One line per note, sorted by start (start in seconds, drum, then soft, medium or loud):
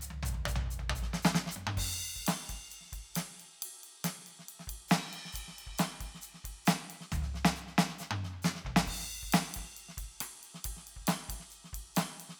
0.01 hi-hat pedal loud
0.10 mid tom medium
0.23 floor tom loud
0.23 hi-hat pedal loud
0.34 mid tom medium
0.45 hi-hat pedal medium
0.45 floor tom loud
0.56 floor tom loud
0.66 floor tom soft
0.70 hi-hat pedal medium
0.79 floor tom medium
0.89 floor tom loud
0.95 hi-hat pedal medium
1.02 snare soft
1.13 snare loud
1.22 snare loud
1.22 hi-hat pedal medium
1.34 snare loud
1.46 snare medium
1.51 kick soft
1.51 hi-hat pedal loud
1.56 high tom medium
1.67 high tom loud
1.77 kick medium
1.77 hi-hat pedal loud
1.77 crash loud
1.92 kick soft
1.99 hi-hat pedal soft
2.04 kick soft
2.16 kick soft
2.21 kick soft
2.26 snare loud
2.26 hi-hat pedal medium
2.26 ride loud
2.49 kick soft
2.49 ride medium
2.56 kick soft
2.68 snare soft
2.68 hi-hat pedal medium
2.68 ride medium
2.81 snare soft
2.85 snare soft
2.92 kick soft
2.92 ride medium
2.99 kick soft
3.14 snare loud
3.14 hi-hat pedal medium
3.14 ride loud
3.40 ride soft
3.62 ride loud
3.83 ride medium
4.04 snare loud
4.04 ride loud
4.26 ride soft
4.39 snare soft
4.48 ride medium
4.59 snare soft
4.65 kick soft
4.65 hi-hat pedal soft
4.69 ride medium
4.88 snare loud
4.88 hi-hat pedal medium
4.88 ride medium
5.13 ride medium
5.25 snare soft
5.32 kick soft
5.32 hi-hat pedal medium
5.32 ride medium
5.40 kick soft
5.48 snare soft
5.58 ride medium
5.66 kick soft
5.78 snare loud
5.78 hi-hat pedal medium
5.78 ride loud
6.00 kick soft
6.00 ride medium
6.07 kick soft
6.14 snare soft
6.21 hi-hat pedal medium
6.21 ride medium
6.34 snare soft
6.44 kick soft
6.44 ride medium
6.50 kick soft
6.65 snare loud
6.65 hi-hat pedal medium
6.65 ride loud
6.90 ride medium
7.00 snare soft
7.12 kick medium
7.12 hi-hat pedal medium
7.12 mid tom loud
7.20 kick soft
7.20 snare soft
7.34 snare soft
7.45 snare loud
7.55 snare soft
7.55 hi-hat pedal medium
7.67 snare soft
7.78 snare loud
7.88 snare soft
7.98 snare medium
7.98 hi-hat pedal medium
8.11 high tom loud
8.23 snare soft
8.33 cross-stick soft
8.42 snare loud
8.42 hi-hat pedal medium
8.55 snare medium
8.65 kick soft
8.65 floor tom medium
8.76 snare loud
8.85 kick medium
8.85 hi-hat pedal medium
8.85 crash loud
9.01 snare soft
9.23 kick soft
9.28 kick soft
9.32 snare loud
9.32 hi-hat pedal medium
9.32 ride loud
9.41 snare soft
9.54 kick soft
9.54 ride loud
9.62 kick soft
9.62 snare soft
9.76 hi-hat pedal soft
9.76 ride medium
9.88 snare soft
9.97 kick soft
9.97 ride medium
10.03 kick soft
10.20 cross-stick medium
10.20 hi-hat pedal medium
10.20 ride loud
10.43 ride medium
10.54 snare soft
10.64 kick soft
10.64 hi-hat pedal soft
10.64 ride loud
10.72 kick soft
10.76 snare soft
10.87 ride medium
10.96 kick soft
11.01 kick soft
11.07 snare loud
11.07 hi-hat pedal medium
11.07 ride loud
11.29 kick soft
11.29 ride loud
11.35 kick soft
11.35 snare soft
11.50 hi-hat pedal soft
11.50 ride soft
11.64 snare soft
11.73 kick soft
11.73 ride medium
11.79 kick soft
11.95 snare loud
11.95 hi-hat pedal medium
11.95 ride loud
12.20 ride medium
12.29 snare soft